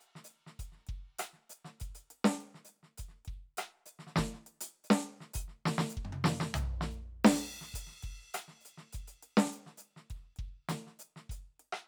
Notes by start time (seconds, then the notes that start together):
0.01 closed hi-hat
0.16 snare
0.25 hi-hat pedal
0.31 closed hi-hat
0.47 snare
0.60 closed hi-hat, kick
0.73 snare
0.76 snare
0.79 snare
0.87 kick, closed hi-hat
0.98 kick
1.19 closed hi-hat, cross-stick
1.34 snare
1.50 hi-hat pedal
1.65 snare
1.79 closed hi-hat, kick, snare
1.90 kick
1.95 closed hi-hat
2.11 closed hi-hat
2.25 snare
2.41 closed hi-hat
2.55 snare
2.65 hi-hat pedal
2.70 closed hi-hat
2.84 snare
2.98 closed hi-hat, kick
3.09 snare
3.14 snare
3.25 kick, closed hi-hat
3.58 closed hi-hat, cross-stick
3.86 hi-hat pedal
4.00 snare
4.07 snare
4.16 kick, snare
4.25 kick
4.34 snare
4.47 closed hi-hat
4.61 closed hi-hat
4.85 hi-hat pedal
4.91 snare
5.21 snare
5.34 open hi-hat, kick, hi-hat pedal
5.43 kick
5.46 kick, snare
5.66 snare
5.79 snare
5.90 hi-hat pedal
5.98 kick
6.04 kick, mid tom
6.07 kick
6.13 closed hi-hat, high tom
6.25 snare
6.41 snare
6.55 hi-hat pedal, floor tom
6.82 snare
6.91 hi-hat pedal
7.25 snare, crash
7.33 snare
7.62 snare
7.71 kick, hi-hat pedal
7.76 closed hi-hat
7.87 snare
7.91 snare
8.03 kick, closed hi-hat
8.11 kick
8.35 closed hi-hat, cross-stick
8.49 snare
8.61 hi-hat pedal
8.66 closed hi-hat
8.78 snare
8.93 closed hi-hat, kick
9.01 kick
9.08 closed hi-hat
9.23 closed hi-hat
9.38 snare
9.46 snare
9.53 closed hi-hat
9.67 snare
9.78 hi-hat pedal
9.82 closed hi-hat
9.97 snare
10.11 kick, closed hi-hat
10.15 snare
10.19 snare
10.22 snare
10.37 kick, closed hi-hat
10.49 kick
10.69 closed hi-hat, snare
10.87 snare
11.00 hi-hat pedal
11.17 snare
11.30 closed hi-hat, kick, snare
11.60 closed hi-hat
11.73 cross-stick